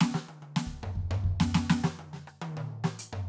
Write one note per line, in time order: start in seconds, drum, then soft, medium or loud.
0.01 snare loud
0.15 snare medium
0.29 high tom medium
0.43 high tom medium
0.57 snare loud
0.67 kick medium
0.84 floor tom loud
0.96 kick medium
1.12 floor tom loud
1.24 kick medium
1.34 kick soft
1.41 snare loud
1.55 snare loud
1.70 snare loud
1.84 snare loud
2.00 high tom medium
2.14 snare medium
2.28 cross-stick medium
2.42 high tom loud
2.57 mid tom medium
2.85 snare loud
3.00 closed hi-hat loud
3.13 floor tom loud